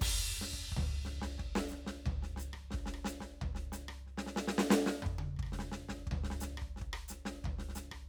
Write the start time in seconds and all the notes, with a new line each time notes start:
0.01 kick, crash
0.41 snare
0.53 kick
0.71 kick
0.77 floor tom
1.03 snare, hi-hat pedal
1.20 kick, snare
1.38 kick, snare
1.55 snare
1.69 snare, hi-hat pedal
1.85 kick, snare
2.06 kick, floor tom
2.22 snare
2.36 snare, hi-hat pedal
2.53 kick, cross-stick
2.71 kick, snare
2.79 cross-stick
2.85 snare
2.94 cross-stick
3.04 snare, hi-hat pedal
3.20 kick, snare
3.41 kick, floor tom
3.55 snare
3.72 snare, hi-hat pedal
3.88 cross-stick
4.06 snare
4.18 snare
4.26 snare
4.36 snare
4.47 snare
4.58 snare
4.70 snare
4.86 snare
5.02 kick, mid tom
5.18 high tom
5.37 kick, cross-stick
5.43 kick, cross-stick
5.46 cross-stick
5.52 snare
5.59 snare
5.72 snare
5.89 kick, snare
6.07 kick
6.11 floor tom
6.23 snare
6.30 snare
6.40 snare, hi-hat pedal
6.57 cross-stick
6.61 kick
6.76 snare
6.81 kick
6.93 cross-stick
7.08 snare, hi-hat pedal
7.25 kick, snare
7.44 kick, floor tom
7.58 snare
7.69 snare
7.75 snare, hi-hat pedal
7.91 kick, cross-stick